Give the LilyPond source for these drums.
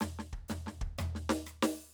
\new DrumStaff \drummode { \time 4/4 \tempo 4 = 122 \tuplet 3/2 { <hhp sn tomfh>8 <sn tomfh>8 bd8 <hhp sn tomfh>8 <tomfh sn>8 bd8 <hhp tomfh ss>8 sn8 sn8 <hhp ss>8 <hho sn>8 r8 } | }